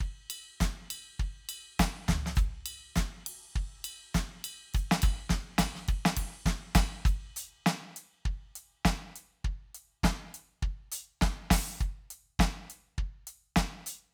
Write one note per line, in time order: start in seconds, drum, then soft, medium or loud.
0.01 kick medium
0.01 ride soft
0.29 kick soft
0.29 ride bell loud
0.61 kick loud
0.61 snare loud
0.61 hi-hat pedal medium
0.85 kick soft
0.91 ride bell loud
1.20 kick medium
1.20 ride soft
1.42 kick soft
1.49 ride bell loud
1.80 kick medium
1.80 snare loud
1.80 hi-hat pedal medium
1.80 ride medium
2.09 kick medium
2.09 snare loud
2.09 mid tom loud
2.26 snare loud
2.36 kick loud
2.36 hi-hat pedal medium
2.66 ride bell loud
2.96 kick medium
2.96 snare loud
2.96 hi-hat pedal medium
3.18 kick soft
3.27 ride loud
3.56 kick medium
3.79 kick soft
3.85 ride bell loud
4.15 kick medium
4.15 snare loud
4.15 hi-hat pedal medium
4.15 ride soft
4.45 ride bell loud
4.74 kick loud
4.74 hi-hat pedal medium
4.74 ride medium
4.92 snare loud
5.02 kick loud
5.02 ride bell loud
5.30 kick medium
5.30 snare loud
5.59 kick medium
5.59 snare loud
5.59 ride bell loud
5.76 snare medium
5.82 snare soft
5.86 kick loud
5.86 snare soft
5.86 ride medium
6.06 snare loud
6.17 kick medium
6.17 ride loud
6.46 kick medium
6.46 snare loud
6.75 kick loud
6.75 snare loud
6.75 ride bell loud
7.06 kick loud
7.06 hi-hat pedal medium
7.37 closed hi-hat loud
7.67 snare loud
7.97 closed hi-hat medium
8.26 kick medium
8.26 crash soft
8.56 closed hi-hat medium
8.85 kick medium
8.85 snare loud
9.16 closed hi-hat medium
9.45 kick medium
9.75 closed hi-hat medium
10.04 kick medium
10.04 snare loud
10.35 closed hi-hat medium
10.63 kick medium
10.63 ride soft
10.92 closed hi-hat loud
11.22 kick loud
11.22 snare loud
11.51 open hi-hat loud
11.51 kick loud
11.51 snare loud
11.80 kick medium
11.80 hi-hat pedal medium
12.11 closed hi-hat medium
12.40 kick loud
12.40 snare loud
12.70 closed hi-hat medium
12.99 kick medium
13.27 closed hi-hat medium
13.56 kick medium
13.56 snare loud
13.87 closed hi-hat loud